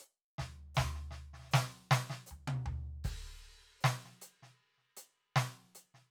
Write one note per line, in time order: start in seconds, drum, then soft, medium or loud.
0.01 hi-hat pedal medium
0.39 snare medium
0.39 floor tom medium
0.75 snare loud
0.75 floor tom loud
0.75 hi-hat pedal medium
0.95 snare soft
1.11 snare soft
1.34 snare soft
1.39 snare soft
1.44 snare soft
1.48 snare soft
1.48 hi-hat pedal medium
1.52 snare soft
1.52 snare loud
1.91 snare loud
2.10 snare medium
2.27 hi-hat pedal medium
2.31 floor tom soft
2.48 high tom loud
2.66 floor tom medium
3.04 kick medium
3.04 hi-hat pedal medium
3.04 crash medium
3.42 open hi-hat soft
3.81 snare loud
3.81 hi-hat pedal soft
4.05 snare soft
4.22 closed hi-hat medium
4.43 snare soft
4.78 snare soft
4.97 closed hi-hat medium
5.36 snare loud
5.75 closed hi-hat medium
5.94 snare soft